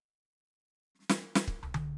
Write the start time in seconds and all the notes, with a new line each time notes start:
0.95 snare
0.99 snare
1.02 snare
1.10 snare
1.35 snare
1.48 kick
1.63 floor tom
1.74 high tom